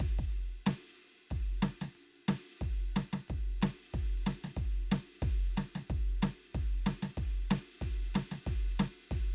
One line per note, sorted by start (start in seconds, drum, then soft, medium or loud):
0.00 kick medium
0.00 ride loud
0.19 kick medium
0.32 ride soft
0.66 snare loud
0.66 ride loud
1.31 kick medium
1.31 ride medium
1.63 snare loud
1.63 ride medium
1.82 snare medium
1.95 ride medium
2.29 snare loud
2.29 ride loud
2.61 kick medium
2.61 ride medium
2.96 snare loud
2.96 ride medium
3.13 snare medium
3.29 kick medium
3.29 ride medium
3.62 snare loud
3.62 ride loud
3.94 kick medium
3.94 ride medium
4.27 snare loud
4.27 ride medium
4.44 snare medium
4.57 kick medium
4.57 ride medium
4.92 snare loud
4.92 ride medium
5.22 kick medium
5.22 ride medium
5.57 snare medium
5.57 ride medium
5.75 snare medium
5.90 kick medium
5.90 ride medium
6.23 snare loud
6.23 ride medium
6.55 kick medium
6.55 ride medium
6.87 snare loud
6.87 ride loud
7.03 snare medium
7.18 kick medium
7.18 ride medium
7.51 snare loud
7.51 ride loud
7.82 kick medium
7.82 ride loud
8.15 snare loud
8.15 ride loud
8.32 snare medium
8.47 kick medium
8.47 ride loud
8.80 snare loud
8.80 ride medium
9.11 kick medium
9.11 ride medium